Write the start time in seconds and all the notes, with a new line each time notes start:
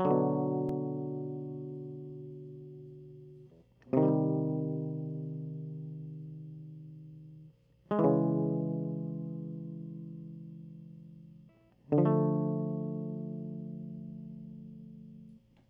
0.00 F#3
0.06 D3
0.12 B2
3.94 C3 D#3
4.03 G3
4.09 C4
7.92 G#3
8.00 E3
8.05 C#3
11.93 D3
11.99 F3
12.06 A3